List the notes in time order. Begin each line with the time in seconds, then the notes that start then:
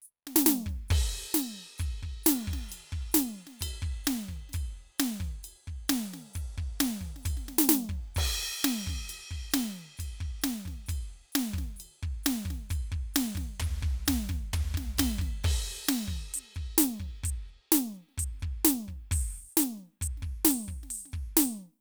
0.02 hi-hat pedal
0.27 snare
0.36 snare
0.46 snare
0.66 kick, snare
0.88 kick, hi-hat pedal, crash
1.33 snare, hi-hat pedal, ride bell
1.78 kick, hi-hat pedal, ride bell
2.02 kick
2.23 snare, hi-hat pedal, crash, ride bell
2.47 kick
2.53 snare
2.68 hi-hat pedal, ride bell
2.92 kick
3.11 snare, hi-hat pedal, ride bell
3.47 snare
3.59 kick, hi-hat pedal, ride bell
3.82 kick
4.04 snare, hi-hat pedal, ride bell
4.28 kick
4.49 snare, hi-hat pedal
4.53 kick, ride bell
4.98 snare, hi-hat pedal, ride bell
5.20 kick
5.43 hi-hat pedal, ride bell
5.67 kick
5.88 snare, hi-hat pedal, ride
6.13 snare
6.33 kick, hi-hat pedal, ride
6.57 kick
6.79 snare, hi-hat pedal, ride
7.01 kick
7.16 snare
7.23 kick, hi-hat pedal, ride bell
7.37 snare
7.48 snare
7.58 snare
7.66 snare, hi-hat pedal
7.89 kick
8.14 kick, hi-hat pedal, crash
8.63 snare, hi-hat pedal, ride
8.87 kick, snare
9.08 hi-hat pedal, ride bell
9.31 kick
9.51 snare, hi-hat pedal, ride bell
9.97 kick, snare, hi-hat pedal, ride bell
10.20 kick
10.41 snare, hi-hat pedal, ride bell
10.65 kick, snare
10.86 kick, hi-hat pedal, ride bell
11.32 snare, hi-hat pedal, ride bell
11.53 kick
11.58 snare
11.76 hi-hat pedal, ride bell
12.02 kick
12.23 snare, hi-hat pedal, ride bell
12.45 kick
12.50 snare
12.69 kick, hi-hat pedal, ride bell
12.92 kick
13.14 snare, hi-hat pedal, ride bell
13.35 kick, snare
13.59 kick, floor tom, hi-hat pedal
13.82 kick
14.05 kick, snare, hi-hat pedal, ride bell
14.29 kick, snare
14.53 kick, floor tom, hi-hat pedal
14.74 kick, snare
14.97 kick, snare, hi-hat pedal, ride bell
15.18 kick, snare
15.44 kick, crash
15.85 snare, hi-hat pedal
15.89 closed hi-hat
16.07 kick
16.34 closed hi-hat, snare
16.54 kick, closed hi-hat
16.78 closed hi-hat, snare
17.00 kick
17.23 closed hi-hat, kick, snare
17.48 closed hi-hat
17.72 closed hi-hat, snare
17.94 closed hi-hat
18.09 snare
18.18 closed hi-hat, kick
18.33 snare
18.39 kick, closed hi-hat
18.64 closed hi-hat, snare
18.88 kick
19.11 open hi-hat, kick
19.52 hi-hat pedal
19.57 closed hi-hat, snare
19.77 snare, closed hi-hat
20.01 closed hi-hat, kick
20.17 snare
20.22 kick, open hi-hat
20.45 open hi-hat, snare
20.67 kick, open hi-hat
20.83 snare
20.90 open hi-hat
21.05 snare
21.12 kick, open hi-hat
21.37 open hi-hat, snare